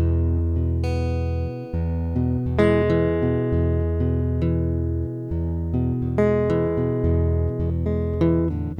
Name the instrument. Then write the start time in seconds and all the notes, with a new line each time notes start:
acoustic guitar
0.00 E2
0.57 B2
0.84 B3
1.75 E2
2.17 B2
2.40 E3
2.48 E2
2.59 G#3
2.83 E3
3.23 B2
3.54 E2
3.82 B2
4.22 F3
5.33 E2
5.51 B2
6.03 E2
6.19 G#3
6.41 E3
6.79 B2
7.05 E2
7.61 E2
7.87 G#3
8.22 E3
8.50 A2 D3